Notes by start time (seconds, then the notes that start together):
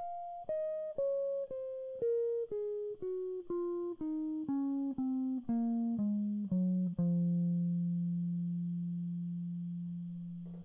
0.00 F5
0.50 D#5
0.99 C#5
1.52 C5
2.03 A#4
2.52 G#4
3.03 F#4
3.51 F4
4.02 D#4
4.49 C#4
4.99 C4
5.50 A#3
6.00 G#3
6.53 F#3
6.89 F3
7.00 F3